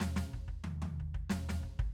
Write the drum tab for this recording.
SD |oo------oo--|
T1 |----oo------|
FT |oo--oo--oo--|
BD |--gg--gg--go|